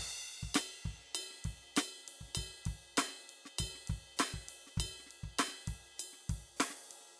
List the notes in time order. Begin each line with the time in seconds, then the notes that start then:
0.21 hi-hat pedal
0.43 kick
0.54 snare, hi-hat pedal, ride bell
0.83 kick, ride
0.92 kick, snare
0.98 snare
1.15 hi-hat pedal, ride bell
1.30 snare
1.33 snare
1.44 kick, ride
1.51 kick
1.76 snare, hi-hat pedal, ride bell
2.08 ride
2.21 kick
2.28 snare
2.34 kick, snare, hi-hat pedal, ride bell
2.48 kick
2.65 kick, ride
2.72 kick
2.97 snare, hi-hat pedal, ride bell
3.08 snare
3.29 ride
3.45 snare
3.58 kick, hi-hat pedal, ride bell
3.66 kick
3.75 snare
3.87 kick, ride
3.97 kick
4.17 snare, hi-hat pedal, ride bell
4.32 kick, snare
4.44 hi-hat pedal
4.49 ride
4.67 snare
4.76 kick, hi-hat pedal
4.80 ride bell
4.85 kick
4.99 snare
5.06 snare
5.11 ride
5.23 kick
5.38 snare, hi-hat pedal, ride bell
5.48 snare
5.67 kick, ride
5.74 kick
5.79 snare
5.98 hi-hat pedal, ride bell
6.13 snare
6.20 cross-stick
6.27 kick, snare, ride
6.37 kick
6.40 kick
6.56 snare, hi-hat pedal
6.61 ride
6.70 snare
6.91 ride
7.00 snare
7.05 snare